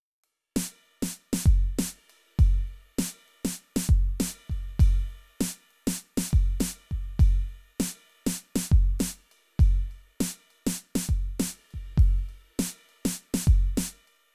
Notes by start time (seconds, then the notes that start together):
0.24 ride
0.56 snare, ride bell
1.02 snare
1.16 ride bell
1.33 snare
1.46 kick, ride bell
1.79 snare, ride
2.10 ride bell
2.39 kick, ride bell
2.67 ride
2.98 snare, ride bell
3.28 ride
3.45 snare
3.58 ride
3.76 snare
3.88 kick, snare, ride
4.20 snare, ride bell
4.50 kick, ride bell
4.79 kick, ride bell
5.10 ride
5.41 snare, ride bell
5.71 ride
5.87 snare
6.00 ride
6.17 snare
6.30 kick, ride bell
6.60 snare, ride bell
6.91 kick, ride
7.19 kick, ride bell
7.49 ride
7.80 snare, ride bell
8.10 ride
8.26 snare
8.55 snare
8.69 kick, ride bell
8.99 snare, ride
9.31 ride bell
9.59 kick, ride bell
9.91 ride bell
10.20 snare, ride bell
10.50 ride bell
10.67 snare
10.95 snare
11.09 kick, ride bell
11.39 snare, ride
11.71 kick, ride bell
11.97 kick, ride
12.29 ride bell
12.59 snare, ride bell
12.89 ride bell
13.05 snare
13.34 snare
13.47 kick, ride bell
13.77 snare, ride bell
14.07 ride bell